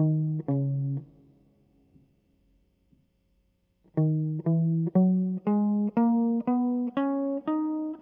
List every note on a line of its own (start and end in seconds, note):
0.00 0.44 D#3
0.50 1.01 C#3
3.99 4.43 D#3
4.48 4.91 E3
4.96 5.42 F#3
5.48 5.92 G#3
5.98 6.44 A#3
6.48 6.92 B3
6.98 7.42 C#4
7.48 7.97 D#4